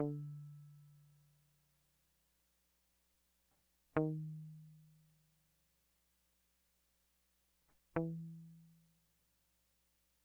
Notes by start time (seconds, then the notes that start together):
0.00 D3
3.98 D#3
7.97 E3